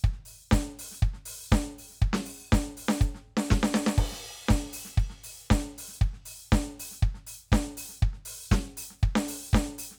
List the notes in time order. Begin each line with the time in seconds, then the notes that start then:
0.01 closed hi-hat, kick, hi-hat pedal
0.13 snare
0.17 snare
0.26 open hi-hat
0.50 closed hi-hat, kick, snare, hi-hat pedal
0.59 snare
0.80 open hi-hat
0.92 snare
0.98 hi-hat pedal
1.03 kick, closed hi-hat
1.14 snare
1.26 open hi-hat
1.49 kick, snare, closed hi-hat, hi-hat pedal
1.79 open hi-hat
1.91 snare
1.98 hi-hat pedal
2.02 kick, closed hi-hat
2.14 snare
2.26 open hi-hat
2.48 hi-hat pedal
2.53 closed hi-hat, kick, snare
2.78 open hi-hat
2.89 snare
2.96 snare, hi-hat pedal
3.02 kick, closed hi-hat
3.15 snare
3.38 snare
3.49 kick, snare, hi-hat pedal
3.64 snare
3.75 snare
3.87 snare
3.96 kick, hi-hat pedal, crash
4.12 snare
4.49 kick, snare
4.56 snare
4.74 open hi-hat
4.86 snare
4.94 hi-hat pedal
4.98 kick, closed hi-hat
5.10 snare
5.24 open hi-hat
5.46 hi-hat pedal
5.51 kick, snare, closed hi-hat
5.59 snare
5.79 open hi-hat
5.89 snare
5.96 hi-hat pedal
6.02 kick, closed hi-hat
6.14 snare
6.26 open hi-hat
6.49 hi-hat pedal
6.53 kick, snare, closed hi-hat
6.80 open hi-hat
6.92 snare
6.99 hi-hat pedal
7.03 kick, closed hi-hat
7.15 snare
7.27 open hi-hat
7.49 kick, hi-hat pedal
7.54 snare, closed hi-hat
7.69 snare
7.78 open hi-hat
7.90 snare
7.93 snare
7.98 hi-hat pedal
8.03 kick, closed hi-hat
8.14 snare
8.26 open hi-hat
8.49 kick, snare, closed hi-hat, hi-hat pedal
8.68 snare
8.72 snare
8.78 open hi-hat
8.91 snare
8.99 hi-hat pedal
9.03 kick, closed hi-hat
9.16 snare
9.29 open hi-hat
9.52 kick, snare, hi-hat pedal
9.56 closed hi-hat
9.79 open hi-hat
9.92 snare